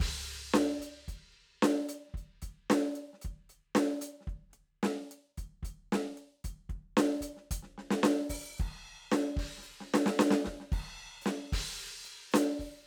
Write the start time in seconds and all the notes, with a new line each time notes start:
0.01 kick, crash
0.25 closed hi-hat
0.54 snare
0.79 closed hi-hat, kick
1.08 closed hi-hat, kick
1.33 closed hi-hat
1.63 snare
1.89 closed hi-hat
2.09 snare
2.15 closed hi-hat, kick
2.42 closed hi-hat, kick
2.71 snare
2.96 closed hi-hat
3.14 snare
3.22 closed hi-hat, kick
3.50 closed hi-hat
3.76 snare
4.02 closed hi-hat
4.21 snare
4.28 kick, closed hi-hat
4.50 snare, closed hi-hat
4.83 snare
5.12 closed hi-hat
5.38 closed hi-hat, kick
5.63 closed hi-hat, kick
5.93 snare
6.18 closed hi-hat
6.45 closed hi-hat, kick
6.70 kick, closed hi-hat
6.98 snare
7.21 closed hi-hat, kick
7.37 snare
7.51 closed hi-hat, kick
7.63 snare
7.78 snare
7.91 snare
8.04 snare
8.18 snare
8.30 open hi-hat, kick
8.58 kick, hi-hat pedal, crash
9.12 snare
9.37 kick, crash
9.58 snare
9.63 hi-hat pedal
9.81 snare
9.94 snare
10.07 snare
10.18 snare, hi-hat pedal
10.31 snare
10.45 kick, snare
10.61 snare
10.72 kick, crash
11.22 hi-hat pedal
11.26 snare
11.53 kick, crash
11.79 hi-hat pedal
12.05 closed hi-hat
12.32 closed hi-hat, snare, hi-hat pedal
12.60 open hi-hat, kick